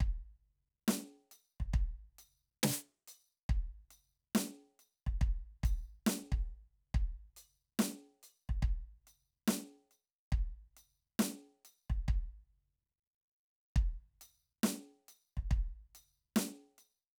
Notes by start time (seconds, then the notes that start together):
0.01 kick, crash
0.88 snare
1.32 closed hi-hat
1.60 kick
1.74 kick
2.19 closed hi-hat
2.64 snare
3.08 closed hi-hat
3.50 kick, crash
3.91 closed hi-hat
4.35 snare
4.80 closed hi-hat
5.07 kick
5.22 kick
5.64 kick, snare, closed hi-hat
6.07 snare
6.32 kick
6.95 kick
7.37 closed hi-hat
7.79 snare
8.23 closed hi-hat
8.49 kick
8.63 kick
9.08 closed hi-hat
9.48 snare
9.91 closed hi-hat
10.33 kick
10.77 closed hi-hat
11.20 snare
11.65 closed hi-hat
11.90 kick
12.09 kick, crash
13.76 kick, snare, crash, ride
14.22 closed hi-hat
14.64 snare
15.09 closed hi-hat
15.37 kick
15.51 kick
15.95 closed hi-hat
16.36 snare
16.79 closed hi-hat